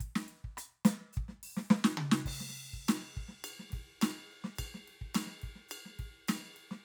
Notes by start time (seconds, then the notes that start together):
0.01 kick, closed hi-hat
0.07 kick
0.16 snare
0.29 closed hi-hat
0.45 kick
0.58 closed hi-hat, cross-stick
0.86 closed hi-hat, snare
1.13 open hi-hat, hi-hat pedal
1.18 kick
1.24 kick
1.29 kick, snare
1.39 kick
1.44 open hi-hat
1.58 snare
1.71 snare
1.84 snare, hi-hat pedal
1.98 high tom
2.12 snare
2.26 kick, crash
2.32 kick
2.35 kick
2.41 snare
2.50 snare, closed hi-hat
2.74 kick
2.89 snare, hi-hat pedal, ride bell
3.00 snare
3.17 kick, ride
3.23 kick
3.29 snare
3.45 hi-hat pedal, ride bell
3.60 snare
3.71 kick, snare, ride
3.80 kick
4.02 snare, hi-hat pedal, ride bell
4.32 ride
4.45 snare
4.56 kick, hi-hat pedal, ride bell
4.75 snare
4.88 ride
5.02 kick
5.15 snare, hi-hat pedal, ride bell
5.27 snare
5.43 kick, ride
5.56 snare
5.69 hi-hat pedal, ride bell
5.86 snare
5.96 kick, snare, ride
6.05 kick
6.28 snare, hi-hat pedal, ride bell
6.39 snare
6.57 ride
6.72 snare